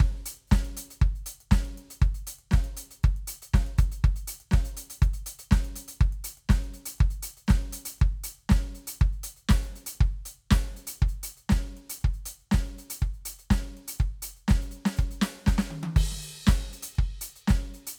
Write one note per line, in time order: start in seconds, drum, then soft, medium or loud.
0.01 kick loud
0.27 closed hi-hat loud
0.48 hi-hat pedal soft
0.52 kick loud
0.52 snare loud
0.66 closed hi-hat medium
0.78 closed hi-hat loud
0.91 closed hi-hat medium
1.02 kick loud
1.02 closed hi-hat soft
1.16 closed hi-hat soft
1.27 closed hi-hat loud
1.41 closed hi-hat medium
1.52 kick loud
1.52 snare loud
1.66 closed hi-hat soft
1.78 closed hi-hat medium
1.91 closed hi-hat medium
2.03 kick loud
2.03 closed hi-hat soft
2.15 closed hi-hat soft
2.28 closed hi-hat loud
2.39 closed hi-hat soft
2.52 kick loud
2.52 snare loud
2.65 closed hi-hat medium
2.78 closed hi-hat loud
2.92 closed hi-hat medium
3.04 kick loud
3.04 closed hi-hat medium
3.17 closed hi-hat soft
3.28 closed hi-hat loud
3.43 closed hi-hat medium
3.55 kick loud
3.55 snare loud
3.67 closed hi-hat soft
3.79 closed hi-hat medium
3.79 kick loud
3.93 closed hi-hat medium
4.05 kick loud
4.05 closed hi-hat soft
4.17 closed hi-hat medium
4.28 closed hi-hat loud
4.41 closed hi-hat medium
4.52 kick loud
4.52 snare loud
4.66 closed hi-hat medium
4.78 closed hi-hat loud
4.91 closed hi-hat medium
5.03 kick loud
5.03 closed hi-hat medium
5.14 closed hi-hat medium
5.27 closed hi-hat loud
5.40 closed hi-hat medium
5.52 kick loud
5.52 snare loud
5.66 closed hi-hat medium
5.77 closed hi-hat loud
5.89 closed hi-hat medium
6.02 kick loud
6.02 closed hi-hat soft
6.13 closed hi-hat soft
6.25 closed hi-hat loud
6.38 closed hi-hat soft
6.50 kick loud
6.50 snare loud
6.65 closed hi-hat soft
6.75 closed hi-hat medium
6.86 closed hi-hat loud
6.99 kick loud
6.99 closed hi-hat soft
7.11 closed hi-hat soft
7.23 closed hi-hat loud
7.38 open hi-hat soft
7.48 kick loud
7.48 snare loud
7.48 hi-hat pedal soft
7.73 closed hi-hat loud
7.86 closed hi-hat loud
7.99 kick loud
7.99 closed hi-hat soft
8.25 closed hi-hat loud
8.39 closed hi-hat soft
8.50 kick loud
8.50 snare loud
8.65 closed hi-hat soft
8.76 closed hi-hat medium
8.88 closed hi-hat loud
9.01 kick loud
9.01 closed hi-hat soft
9.14 closed hi-hat soft
9.24 closed hi-hat loud
9.37 closed hi-hat soft
9.50 kick loud
9.50 snare loud
9.64 closed hi-hat soft
9.76 closed hi-hat medium
9.87 closed hi-hat loud
10.01 kick loud
10.26 closed hi-hat loud
10.38 closed hi-hat soft
10.52 kick loud
10.52 snare loud
10.77 closed hi-hat soft
10.88 closed hi-hat loud
11.00 kick loud
11.00 closed hi-hat soft
11.09 closed hi-hat soft
11.24 closed hi-hat loud
11.38 closed hi-hat soft
11.50 kick loud
11.50 snare loud
11.65 closed hi-hat soft
11.78 closed hi-hat soft
11.91 closed hi-hat loud
12.02 kick loud
12.02 closed hi-hat soft
12.14 closed hi-hat soft
12.26 closed hi-hat loud
12.26 kick soft
12.40 closed hi-hat soft
12.52 kick loud
12.52 snare loud
12.66 closed hi-hat soft
12.79 closed hi-hat medium
12.91 closed hi-hat loud
13.03 kick medium
13.03 closed hi-hat soft
13.14 closed hi-hat soft
13.22 kick soft
13.26 closed hi-hat loud
13.40 closed hi-hat soft
13.51 kick loud
13.51 snare loud
13.65 closed hi-hat soft
13.78 closed hi-hat soft
13.89 closed hi-hat loud
14.00 kick loud
14.00 closed hi-hat soft
14.23 closed hi-hat loud
14.37 closed hi-hat soft
14.49 kick loud
14.49 snare loud
14.63 closed hi-hat soft
14.72 closed hi-hat medium
14.86 snare loud
14.97 closed hi-hat soft
14.97 kick loud
15.12 closed hi-hat medium
15.22 snare loud
15.47 kick loud
15.47 snare loud
15.59 snare loud
15.71 high tom loud
15.84 high tom loud
15.97 kick loud
15.97 crash loud
16.12 snare soft
16.23 closed hi-hat medium
16.48 kick loud
16.48 snare loud
16.74 closed hi-hat medium
16.83 closed hi-hat loud
16.96 kick loud
16.96 closed hi-hat soft
17.22 closed hi-hat loud
17.37 closed hi-hat soft
17.48 kick loud
17.48 snare loud
17.62 closed hi-hat soft
17.75 closed hi-hat soft
17.88 closed hi-hat loud